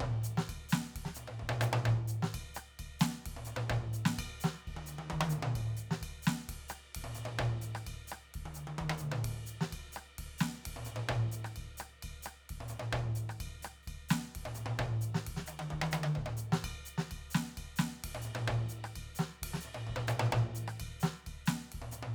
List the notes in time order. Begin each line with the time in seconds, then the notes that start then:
0.01 kick, mid tom
0.22 hi-hat pedal, mid tom
0.38 snare
0.50 kick, ride bell
0.69 snare, hi-hat pedal
0.96 kick, ride
1.04 kick, snare
1.15 hi-hat pedal, mid tom
1.28 mid tom
1.40 kick, mid tom
1.50 mid tom
1.62 hi-hat pedal, mid tom
1.74 mid tom
1.86 kick, mid tom
2.08 hi-hat pedal
2.23 snare
2.35 kick, ride bell
2.55 cross-stick, hi-hat pedal
2.80 kick, ride bell
3.00 snare, hi-hat pedal
3.26 kick, ride
3.33 kick
3.37 mid tom
3.45 hi-hat pedal, mid tom
3.57 mid tom
3.70 kick, mid tom
3.77 kick
3.94 hi-hat pedal
4.06 snare
4.19 kick, ride bell
4.41 snare, hi-hat pedal
4.68 kick, ride
4.73 kick, high tom
4.87 hi-hat pedal, high tom
4.99 high tom
5.10 kick, high tom
5.21 high tom
5.30 hi-hat pedal, mid tom
5.43 mid tom
5.56 kick, ride bell
5.77 hi-hat pedal
5.91 snare
6.03 kick, ride bell
6.08 kick
6.23 hi-hat pedal
6.27 snare
6.49 kick, ride
6.56 kick
6.69 cross-stick, hi-hat pedal
6.95 kick, ride
7.05 mid tom
7.15 hi-hat pedal, mid tom
7.26 mid tom
7.39 kick, mid tom
7.46 kick
7.62 hi-hat pedal
7.76 cross-stick
7.87 kick, ride bell
8.08 hi-hat pedal
8.12 cross-stick
8.35 kick, ride
8.42 kick
8.46 high tom
8.55 hi-hat pedal, high tom
8.68 high tom
8.79 kick, high tom
8.90 high tom
8.98 hi-hat pedal, mid tom
9.12 mid tom
9.24 kick, ride
9.47 hi-hat pedal
9.61 snare
9.73 kick, ride bell
9.93 cross-stick, hi-hat pedal
10.19 kick, ride
10.39 snare, hi-hat pedal
10.66 kick, ride
10.77 mid tom
10.85 hi-hat pedal
10.97 mid tom
11.09 kick, mid tom
11.21 mid tom
11.32 hi-hat pedal
11.45 cross-stick
11.56 kick, ride bell
11.64 kick
11.78 cross-stick, hi-hat pedal
12.03 kick, ride bell
12.23 cross-stick, hi-hat pedal
12.50 kick, ride
12.61 mid tom
12.69 hi-hat pedal, mid tom
12.80 mid tom
12.93 kick, mid tom
12.99 kick
13.16 hi-hat pedal
13.30 cross-stick
13.41 kick, ride bell
13.63 cross-stick, hi-hat pedal
13.83 hi-hat pedal
13.88 kick, ride bell
14.09 snare, hi-hat pedal
14.36 kick, ride
14.46 mid tom
14.55 hi-hat pedal, mid tom
14.66 mid tom
14.80 kick, mid tom
14.90 mid tom
15.02 hi-hat pedal
15.15 snare
15.27 kick, ride
15.37 snare
15.47 hi-hat pedal, high tom
15.60 high tom
15.71 kick, high tom
15.82 high tom
15.92 hi-hat pedal, high tom
16.04 high tom
16.16 kick, mid tom
16.27 mid tom
16.37 hi-hat pedal
16.53 snare
16.64 kick, ride bell
16.74 kick
16.86 hi-hat pedal
16.98 snare
17.12 kick, ride bell
17.31 hi-hat pedal
17.35 snare
17.58 kick, ride bell
17.77 snare, hi-hat pedal
18.04 kick, ride
18.15 mid tom
18.22 hi-hat pedal, mid tom
18.35 mid tom
18.48 kick, mid tom
18.69 hi-hat pedal
18.85 cross-stick
18.96 kick, ride bell
19.15 hi-hat pedal
19.20 snare
19.43 kick, ride
19.54 snare
19.61 hi-hat pedal
19.65 mid tom
19.75 mid tom
19.87 kick, mid tom
19.97 mid tom
20.08 hi-hat pedal, mid tom
20.20 mid tom
20.27 mid tom
20.33 kick, mid tom
20.42 mid tom
20.55 hi-hat pedal
20.68 cross-stick
20.80 kick, ride bell
20.87 kick
21.01 snare, hi-hat pedal
21.27 kick, ride bell
21.46 snare, hi-hat pedal
21.72 kick, ride
21.82 mid tom
21.92 hi-hat pedal, mid tom
22.03 mid tom